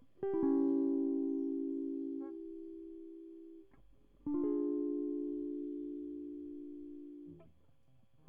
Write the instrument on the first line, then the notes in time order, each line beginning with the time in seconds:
electric guitar
0.24 G4
0.34 E4
0.44 C#4
4.27 D4
4.35 F4
4.44 G#4